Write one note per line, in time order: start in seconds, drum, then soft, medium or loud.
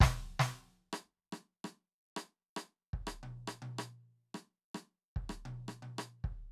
0.01 kick loud
0.01 snare loud
0.40 snare loud
0.93 cross-stick medium
1.33 cross-stick medium
1.65 cross-stick medium
2.17 cross-stick medium
2.57 cross-stick medium
2.94 kick medium
3.07 cross-stick medium
3.23 high tom medium
3.48 cross-stick medium
3.62 high tom medium
3.79 cross-stick medium
4.35 cross-stick medium
4.75 cross-stick medium
5.16 kick medium
5.30 cross-stick medium
5.46 high tom medium
5.69 cross-stick medium
5.83 high tom medium
5.99 cross-stick medium
6.25 kick medium